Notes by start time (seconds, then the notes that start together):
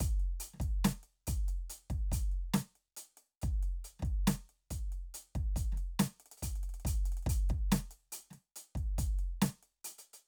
0.01 closed hi-hat, kick
0.20 closed hi-hat
0.41 closed hi-hat
0.54 snare
0.61 kick, closed hi-hat
0.85 closed hi-hat, snare
1.04 closed hi-hat
1.28 closed hi-hat, kick
1.49 closed hi-hat
1.70 closed hi-hat
1.91 kick, closed hi-hat
2.12 closed hi-hat, kick
2.18 snare
2.32 closed hi-hat
2.54 closed hi-hat, snare
2.76 closed hi-hat
2.97 closed hi-hat
3.18 closed hi-hat
3.42 closed hi-hat, kick
3.63 closed hi-hat
3.85 closed hi-hat
4.00 kick, snare
4.06 closed hi-hat
4.28 closed hi-hat, snare
4.50 closed hi-hat
4.71 closed hi-hat, kick
4.93 closed hi-hat
5.15 closed hi-hat
5.36 kick, closed hi-hat
5.57 closed hi-hat, kick
5.73 snare
5.78 closed hi-hat
6.00 closed hi-hat, snare
6.21 closed hi-hat
6.27 closed hi-hat
6.32 closed hi-hat
6.38 closed hi-hat
6.43 closed hi-hat, kick
6.56 closed hi-hat
6.64 closed hi-hat
6.70 closed hi-hat
6.75 closed hi-hat
6.81 closed hi-hat
6.86 closed hi-hat, kick
7.06 closed hi-hat
7.13 closed hi-hat
7.18 closed hi-hat
7.23 kick, closed hi-hat
7.30 closed hi-hat
7.50 kick, closed hi-hat
7.72 closed hi-hat, snare
7.92 closed hi-hat
8.13 closed hi-hat
8.31 snare, closed hi-hat
8.57 closed hi-hat
8.76 kick, closed hi-hat
8.99 closed hi-hat, kick
9.19 closed hi-hat
9.42 closed hi-hat, snare
9.63 closed hi-hat
9.85 closed hi-hat
9.99 closed hi-hat
10.14 closed hi-hat